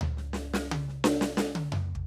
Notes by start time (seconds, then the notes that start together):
0.02 floor tom
0.17 snare
0.33 snare
0.54 snare
0.71 high tom
0.88 snare
1.04 snare
1.21 snare
1.37 snare
1.55 high tom
1.72 mid tom
1.95 kick